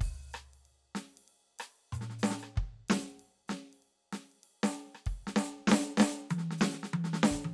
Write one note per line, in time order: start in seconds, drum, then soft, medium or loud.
0.01 open hi-hat medium
0.01 kick medium
0.01 ride medium
0.31 cross-stick medium
0.31 hi-hat pedal soft
0.31 ride soft
0.54 ride soft
0.66 ride soft
0.95 snare medium
0.95 hi-hat pedal soft
0.95 ride medium
1.18 ride soft
1.28 ride soft
1.59 cross-stick medium
1.59 hi-hat pedal medium
1.59 ride medium
1.93 hi-hat pedal medium
1.93 mid tom medium
2.01 snare soft
2.10 snare soft
2.19 hi-hat pedal medium
2.23 snare loud
2.31 snare medium
2.39 hi-hat pedal soft
2.43 cross-stick medium
2.56 kick medium
2.56 mid tom soft
2.89 snare loud
2.89 hi-hat pedal soft
2.89 ride soft
3.08 ride soft
3.20 ride soft
3.48 snare medium
3.48 hi-hat pedal soft
3.48 ride soft
3.73 ride soft
3.83 ride soft
4.13 snare medium
4.13 hi-hat pedal soft
4.13 ride medium
4.32 ride soft
4.44 ride soft
4.64 snare loud
4.64 hi-hat pedal soft
4.75 ride soft
4.95 cross-stick medium
5.06 kick medium
5.06 ride soft
5.27 snare medium
5.36 snare loud
5.68 snare loud
5.72 snare loud
5.98 snare medium
5.98 hi-hat pedal medium
6.00 snare loud
6.30 hi-hat pedal medium
6.30 high tom loud
6.39 snare soft
6.51 snare medium
6.58 snare loud
6.58 hi-hat pedal medium
6.73 snare soft
6.83 snare medium
6.83 hi-hat pedal soft
6.94 high tom loud
7.04 snare medium
7.14 snare medium
7.14 hi-hat pedal soft
7.23 snare loud
7.31 kick soft
7.31 mid tom medium
7.45 high tom medium